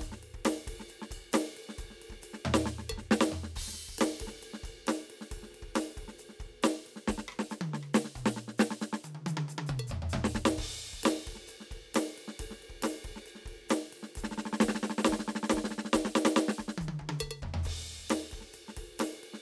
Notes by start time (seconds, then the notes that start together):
0.01 kick, hi-hat pedal, ride bell
0.08 kick
0.12 kick, snare
0.23 ride
0.34 kick
0.39 kick
0.45 snare, hi-hat pedal, ride
0.67 kick, ride
0.74 kick
0.80 snare
0.88 hi-hat pedal, ride
1.02 snare
1.11 kick, ride bell
1.17 kick
1.32 snare, hi-hat pedal, ride
1.57 ride
1.69 snare
1.78 kick, hi-hat pedal, ride
1.85 kick
1.90 snare
2.02 ride
2.10 kick, snare
2.15 kick
2.22 hi-hat pedal, ride
2.33 snare
2.45 floor tom
2.54 snare
2.66 snare, hi-hat pedal
2.78 snare
2.89 kick, percussion
2.98 kick, snare
3.11 snare, hi-hat pedal
3.21 snare
3.28 snare, floor tom
3.43 snare
3.56 kick, hi-hat pedal, crash
3.64 kick, snare
3.68 kick
3.73 snare
3.88 kick
3.98 snare, hi-hat pedal, ride
4.20 kick, ride
4.27 kick, snare
4.41 hi-hat pedal, ride
4.53 snare
4.63 kick, ride bell
4.70 kick
4.86 snare, hi-hat pedal, ride
5.10 ride
5.21 snare
5.31 kick, hi-hat pedal, ride
5.38 kick
5.43 snare
5.50 snare
5.54 ride
5.62 kick
5.68 kick
5.75 snare, hi-hat pedal, ride
5.97 kick, ride
6.03 kick
6.08 snare
6.18 hi-hat pedal, ride
6.29 snare
6.40 kick, ride bell
6.46 kick
6.62 snare, hi-hat pedal, ride
6.86 ride
6.96 snare
7.08 kick, snare, hi-hat pedal
7.15 kick, snare
7.28 cross-stick
7.32 cross-stick
7.39 snare
7.50 snare, hi-hat pedal
7.61 high tom
7.73 snare
7.83 cross-stick
7.94 snare, hi-hat pedal
8.15 kick, hi-hat pedal, mid tom
8.26 snare
8.36 snare
8.48 snare
8.58 snare, hi-hat pedal
8.71 snare
8.81 snare, hi-hat pedal
8.93 snare
9.04 hi-hat pedal, high tom
9.15 high tom
9.26 hi-hat pedal, high tom
9.37 high tom
9.48 hi-hat pedal, high tom
9.58 high tom
9.66 kick, hi-hat pedal, mid tom
9.75 kick
9.79 percussion
9.87 kick, hi-hat pedal
9.91 floor tom
10.02 floor tom
10.09 hi-hat pedal, floor tom
10.14 kick
10.24 snare
10.33 kick, snare, hi-hat pedal
10.44 kick, snare
10.58 kick, ride
10.68 kick, cross-stick
10.77 hi-hat pedal
10.93 kick
11.03 snare, hi-hat pedal, ride
11.27 kick, ride
11.33 kick, snare
11.47 hi-hat pedal, ride
11.60 snare
11.71 kick, ride
11.77 kick
11.94 snare, hi-hat pedal, ride
12.18 ride
12.28 snare
12.39 kick, hi-hat pedal, ride
12.46 kick
12.51 snare
12.62 ride
12.69 kick
12.75 kick
12.82 snare, hi-hat pedal, ride
13.04 kick, ride
13.10 kick
13.16 snare
13.26 hi-hat pedal, ride
13.35 snare
13.40 snare
13.45 kick, ride
13.69 snare, hi-hat pedal, ride
13.93 ride
14.03 snare
14.15 kick, hi-hat pedal, ride
14.24 kick, snare
14.31 snare
14.38 snare
14.45 snare
14.53 snare
14.60 kick, snare, hi-hat pedal
14.68 snare
14.75 snare
14.83 snare
14.90 snare
14.98 snare
15.05 snare, hi-hat pedal
15.09 kick, snare
15.19 snare
15.28 snare
15.35 snare
15.43 snare
15.50 kick, snare, hi-hat pedal
15.57 snare
15.64 snare
15.71 snare
15.78 snare
15.85 snare
15.93 kick, snare, hi-hat pedal
16.05 snare
16.15 snare
16.25 snare
16.36 snare, hi-hat pedal
16.48 snare
16.59 kick, hi-hat pedal
16.68 snare
16.78 kick, hi-hat pedal, high tom
16.86 kick, high tom
16.99 kick, high tom
17.09 high tom
17.19 kick, hi-hat pedal, percussion
17.28 kick, percussion
17.37 hi-hat pedal
17.42 kick, floor tom
17.54 floor tom
17.63 kick, hi-hat pedal, floor tom, ride
17.98 kick
18.10 snare, hi-hat pedal, ride
18.31 kick, ride
18.39 kick, snare
18.53 hi-hat pedal, ride
18.68 snare
18.77 kick, ride
18.83 kick
18.98 snare, hi-hat pedal, ride
19.23 ride
19.33 snare